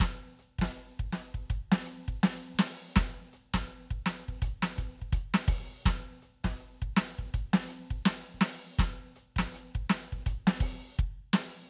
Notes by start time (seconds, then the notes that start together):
0.01 open hi-hat, kick, snare, hi-hat pedal
0.24 closed hi-hat
0.40 closed hi-hat
0.59 kick, snare, closed hi-hat
0.77 closed hi-hat
0.98 kick, closed hi-hat
1.13 closed hi-hat, snare
1.35 kick, closed hi-hat
1.51 closed hi-hat, kick
1.73 snare
1.86 closed hi-hat
2.07 kick, closed hi-hat
2.24 open hi-hat, snare
2.55 kick
2.59 open hi-hat, snare
2.97 open hi-hat, kick, snare, hi-hat pedal
3.19 closed hi-hat
3.34 closed hi-hat
3.55 kick, snare, closed hi-hat
3.71 closed hi-hat
3.91 kick, closed hi-hat
4.07 closed hi-hat, snare
4.29 kick, closed hi-hat
4.43 closed hi-hat, kick
4.63 snare
4.78 closed hi-hat, kick
5.00 kick, closed hi-hat
5.13 closed hi-hat, kick
5.21 hi-hat pedal
5.35 snare
5.49 open hi-hat, kick
5.86 closed hi-hat, kick, snare, hi-hat pedal
6.07 closed hi-hat
6.23 closed hi-hat
6.45 kick, snare, closed hi-hat
6.61 closed hi-hat
6.83 kick, closed hi-hat
6.97 closed hi-hat, snare
7.19 kick, closed hi-hat
7.35 closed hi-hat, kick
7.54 snare
7.69 closed hi-hat
7.91 kick
8.06 open hi-hat, snare
8.35 kick
8.42 open hi-hat, snare
8.79 closed hi-hat, kick, snare, hi-hat pedal
9.01 closed hi-hat
9.17 closed hi-hat
9.37 kick, snare, closed hi-hat
9.55 closed hi-hat
9.76 kick
9.90 closed hi-hat, snare
10.13 kick
10.27 closed hi-hat, kick
10.48 snare
10.61 open hi-hat, kick
10.97 kick, hi-hat pedal
11.04 crash, ride
11.34 open hi-hat, snare